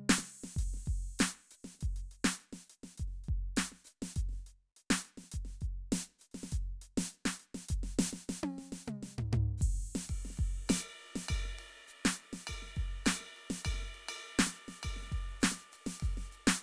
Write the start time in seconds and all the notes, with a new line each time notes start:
0.10 snare, crash
0.19 snare
0.44 snare
0.57 closed hi-hat, kick
0.63 kick
0.66 kick
0.74 snare
0.77 snare
0.82 snare, closed hi-hat
0.88 kick
1.19 closed hi-hat, snare
1.51 open hi-hat, hi-hat pedal
1.64 snare
1.75 snare, hi-hat pedal
1.79 closed hi-hat, kick, snare
1.96 closed hi-hat
2.11 closed hi-hat
2.25 snare
2.40 closed hi-hat
2.53 snare
2.65 hi-hat pedal
2.70 closed hi-hat
2.84 snare
2.96 closed hi-hat, snare
3.00 kick
3.08 snare
3.14 snare
3.24 closed hi-hat
3.29 kick
3.35 kick
3.38 kick
3.57 closed hi-hat, snare
3.72 snare
3.85 closed hi-hat, hi-hat pedal
4.02 snare
4.16 closed hi-hat, kick
4.26 kick, snare
4.33 snare
4.40 snare
4.47 closed hi-hat
4.77 closed hi-hat
4.90 snare
4.99 hi-hat pedal
5.05 closed hi-hat
5.18 snare
5.24 snare
5.32 closed hi-hat, kick
5.45 snare
5.50 snare
5.61 kick, closed hi-hat
5.92 closed hi-hat, snare
6.19 closed hi-hat, hi-hat pedal
6.35 snare
6.43 snare
6.52 closed hi-hat, kick
6.62 kick
6.82 closed hi-hat
6.98 snare
7.11 closed hi-hat
7.26 snare
7.35 hi-hat pedal
7.40 closed hi-hat
7.55 snare
7.69 closed hi-hat, kick
7.83 snare
7.99 snare
8.13 snare
8.28 snare, hi-hat pedal
8.43 high tom
8.58 snare
8.72 snare
8.85 hi-hat pedal, mid tom
9.03 snare
9.18 floor tom
9.33 floor tom
9.58 kick, hi-hat pedal
9.62 crash
9.69 kick
9.72 kick
9.83 kick
9.95 snare
10.09 kick, ride
10.25 snare
10.30 snare
10.38 kick, snare, ride
10.49 kick
10.68 snare, hi-hat pedal, ride bell
10.97 hi-hat pedal, ride
11.16 snare
11.28 kick, snare, hi-hat pedal, ride bell
11.40 kick
11.45 snare
11.59 ride
11.88 hi-hat pedal, ride
12.05 snare
12.20 ride
12.33 snare
12.44 hi-hat pedal, ride bell
12.50 kick
12.62 snare
12.67 snare
12.77 kick, ride
12.86 kick
13.05 snare, hi-hat pedal, ride bell
13.21 snare
13.37 ride
13.50 snare
13.64 kick, hi-hat pedal, ride bell
13.74 snare
13.79 snare
13.82 snare
13.95 ride
14.09 ride bell
14.18 hi-hat pedal
14.23 ride
14.39 snare
14.47 snare, hi-hat pedal
14.57 ride
14.68 snare
14.81 hi-hat pedal, ride bell
14.85 kick
14.96 snare
15.03 snare
15.07 snare
15.12 kick, ride
15.41 snare, hi-hat pedal, ride
15.52 snare
15.72 hi-hat pedal, ride
15.87 snare
16.00 kick, hi-hat pedal, ride
16.09 kick
16.12 kick
16.17 snare
16.32 hi-hat pedal, ride
16.47 snare